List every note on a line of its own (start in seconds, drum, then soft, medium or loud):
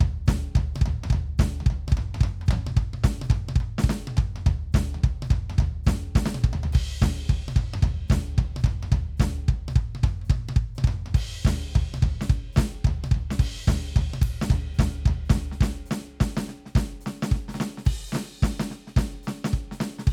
0.01 kick loud
0.01 floor tom loud
0.26 kick loud
0.26 snare loud
0.26 floor tom loud
0.26 hi-hat pedal soft
0.56 kick loud
0.56 floor tom loud
0.75 hi-hat pedal soft
0.75 high tom loud
0.82 kick loud
0.86 floor tom loud
1.04 mid tom loud
1.10 kick loud
1.10 floor tom loud
1.38 kick loud
1.38 snare loud
1.38 floor tom loud
1.38 hi-hat pedal soft
1.61 floor tom medium
1.67 kick loud
1.71 floor tom loud
1.88 kick loud
1.88 hi-hat pedal soft
1.88 high tom loud
1.98 mid tom loud
2.15 mid tom loud
2.21 kick loud
2.21 mid tom loud
2.42 mid tom medium
2.46 kick loud
2.46 hi-hat pedal soft
2.51 floor tom loud
2.67 high tom loud
2.77 kick loud
2.77 mid tom loud
2.94 high tom loud
3.04 kick loud
3.04 snare loud
3.22 hi-hat pedal soft
3.22 high tom loud
3.30 kick loud
3.30 mid tom loud
3.49 high tom loud
3.56 kick loud
3.61 mid tom medium
3.79 snare loud
3.83 kick loud
3.83 hi-hat pedal soft
3.90 snare loud
4.08 high tom loud
4.17 kick loud
4.17 mid tom loud
4.36 mid tom medium
4.47 kick loud
4.47 floor tom loud
4.73 kick loud
4.73 snare loud
4.73 floor tom loud
4.73 hi-hat pedal soft
4.95 floor tom medium
5.04 kick loud
5.04 floor tom medium
5.23 hi-hat pedal soft
5.23 high tom loud
5.31 kick loud
5.31 mid tom loud
5.50 mid tom loud
5.59 kick loud
5.59 floor tom loud
5.84 kick loud
5.84 snare loud
5.84 hi-hat pedal soft
5.89 mid tom loud
6.16 kick loud
6.16 snare loud
6.23 snare loud
6.23 hi-hat pedal soft
6.35 high tom loud
6.44 kick loud
6.53 floor tom loud
6.64 floor tom loud
6.73 kick loud
6.73 ride loud
6.99 kick loud
6.99 snare loud
6.99 hi-hat pedal soft
7.04 floor tom loud
7.30 kick loud
7.30 floor tom loud
7.49 hi-hat pedal soft
7.49 high tom loud
7.56 kick loud
7.56 mid tom loud
7.74 mid tom loud
7.83 kick loud
7.83 floor tom loud
8.08 kick loud
8.08 snare loud
8.08 hi-hat pedal soft
8.13 floor tom loud
8.38 kick loud
8.38 floor tom loud
8.57 hi-hat pedal soft
8.57 high tom loud
8.64 kick loud
8.64 mid tom loud
8.83 mid tom loud
8.92 kick loud
8.92 floor tom loud
9.18 kick loud
9.18 snare loud
9.18 hi-hat pedal soft
9.23 floor tom loud
9.49 kick loud
9.49 floor tom medium
9.69 hi-hat pedal soft
9.69 high tom loud
9.76 kick loud
9.76 mid tom medium
9.95 high tom loud
10.04 kick loud
10.04 mid tom loud
10.22 hi-hat pedal soft
10.22 high tom medium
10.30 kick loud
10.30 high tom loud
10.49 high tom loud
10.56 kick loud
10.75 hi-hat pedal soft
10.75 high tom loud
10.84 kick loud
10.84 mid tom loud
11.06 mid tom medium
11.15 kick loud
11.15 ride loud
11.43 kick loud
11.43 snare loud
11.43 hi-hat pedal soft
11.48 floor tom loud
11.76 kick loud
11.76 floor tom loud
11.94 hi-hat pedal soft
11.94 high tom loud
12.03 kick loud
12.03 floor tom loud
12.21 snare loud
12.30 kick loud
12.30 mid tom medium
12.53 snare loud
12.53 hi-hat pedal soft
12.58 kick loud
12.58 snare loud
12.85 kick loud
12.85 floor tom loud
13.04 hi-hat pedal soft
13.04 high tom loud
13.12 kick loud
13.12 floor tom medium
13.31 snare loud
13.40 kick loud
13.40 ride loud
13.63 hi-hat pedal soft
13.68 kick loud
13.68 snare loud
13.68 floor tom loud
13.96 kick loud
13.96 floor tom loud
14.14 hi-hat pedal soft
14.14 high tom loud
14.22 kick loud
14.22 ride loud
14.42 snare loud
14.50 kick loud
14.50 floor tom loud
14.74 hi-hat pedal soft
14.79 kick loud
14.79 snare loud
14.79 floor tom loud
15.06 kick loud
15.06 floor tom loud
15.26 hi-hat pedal soft
15.30 kick loud
15.30 snare loud
15.36 floor tom loud
15.52 snare medium
15.61 kick loud
15.61 snare loud
15.86 hi-hat pedal medium
15.91 snare loud
16.21 kick loud
16.21 snare loud
16.37 snare loud
16.42 hi-hat pedal medium
16.49 snare medium
16.66 snare soft
16.76 kick loud
16.76 snare loud
16.96 snare soft
17.01 hi-hat pedal medium
17.06 snare loud
17.23 snare loud
17.32 kick loud
17.32 snare soft
17.49 snare medium
17.49 hi-hat pedal medium
17.55 snare medium
17.60 snare loud
17.78 snare medium
17.86 kick loud
17.86 crash loud
18.09 snare loud
18.09 hi-hat pedal medium
18.15 snare loud
18.43 kick loud
18.43 snare loud
18.60 snare loud
18.60 hi-hat pedal medium
18.71 snare medium
18.87 snare soft
18.97 kick loud
18.97 snare loud
19.15 snare soft
19.23 hi-hat pedal medium
19.28 snare loud
19.45 snare loud
19.53 kick loud
19.72 snare medium
19.72 hi-hat pedal medium
19.81 snare loud
19.99 snare medium
20.07 kick loud
20.07 crash medium